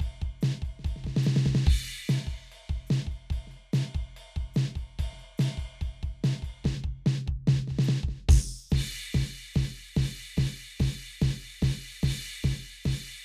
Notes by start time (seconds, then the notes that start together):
0.01 kick, ride bell
0.22 kick, ride
0.42 snare, hi-hat pedal, ride bell
0.63 kick, ride
0.80 snare
0.85 kick, ride bell
0.97 snare
1.05 kick, snare
1.17 snare
1.23 snare, hi-hat pedal
1.37 snare
1.46 kick, snare
1.56 snare
1.66 kick, crash
2.09 snare, hi-hat pedal, ride bell
2.27 kick
2.52 ride bell
2.70 kick, ride
2.87 snare, hi-hat pedal
2.93 ride bell
3.07 kick
3.12 ride
3.31 kick, ride
3.48 snare, ride
3.74 snare, hi-hat pedal, ride bell
3.95 kick, ride
4.17 ride
4.37 kick, ride
4.54 snare, hi-hat pedal, ride bell
4.76 kick, ride
5.00 kick, ride bell
5.13 snare
5.20 ride
5.38 snare, hi-hat pedal, ride bell
5.58 kick, ride
5.82 kick, ride bell
6.04 kick, ride
6.25 snare, ride bell
6.43 kick, ride
6.65 kick, snare, floor tom
6.85 kick
7.07 snare, floor tom
7.27 kick, floor tom
7.48 snare, floor tom
7.53 kick
7.68 kick, snare
7.79 snare
7.84 hi-hat pedal
7.89 snare
8.04 kick
8.09 snare
8.29 kick, snare, crash
8.71 kick, snare, hi-hat pedal, crash
9.13 kick, snare, hi-hat pedal, crash
9.36 crash
9.54 kick, snare, hi-hat pedal, crash
9.77 crash
9.95 kick, snare, hi-hat pedal, crash
10.17 crash
10.37 kick, snare, hi-hat pedal, crash
10.59 crash
10.80 kick, snare, hi-hat pedal, crash
11.01 crash
11.21 kick, snare, hi-hat pedal, crash
11.42 crash
11.63 kick, snare, hi-hat pedal, crash
11.83 crash
12.03 kick, snare, hi-hat pedal, crash
12.24 crash
12.43 kick, snare, hi-hat pedal, crash
12.65 crash
12.85 kick, snare, hi-hat pedal, crash
13.07 crash